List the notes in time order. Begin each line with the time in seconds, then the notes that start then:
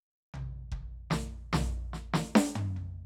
0.34 floor tom, high tom
0.72 kick, floor tom
1.10 snare, floor tom
1.53 snare, floor tom
1.93 snare
2.14 snare
2.35 snare
2.56 mid tom
2.76 floor tom